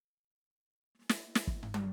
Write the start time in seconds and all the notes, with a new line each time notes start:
0.95 snare
0.99 snare
1.02 snare
1.10 snare
1.36 snare
1.48 kick
1.63 floor tom
1.74 high tom